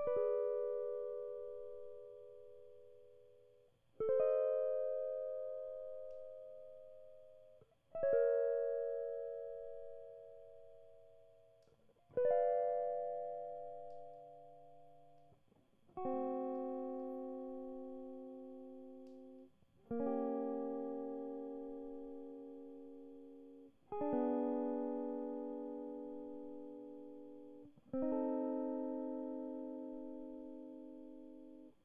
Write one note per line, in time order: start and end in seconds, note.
0.00 3.01 D5
0.08 3.29 B4
0.19 2.51 G#4
4.01 6.03 A4
4.10 7.53 C5
4.20 7.54 D#5
7.97 11.48 E5
8.03 10.80 C#5
8.14 10.89 A#4
12.17 14.10 B4
12.26 14.72 D5
12.32 15.26 F5
15.99 19.38 F#4
16.07 19.54 C4
16.15 17.61 A3
19.91 23.51 A#3
20.01 23.78 C#4
20.09 23.56 G4
23.93 27.72 G#4
24.03 27.78 D4
24.13 27.75 B3
27.95 31.78 C4
28.04 31.80 D#4
28.13 31.64 A4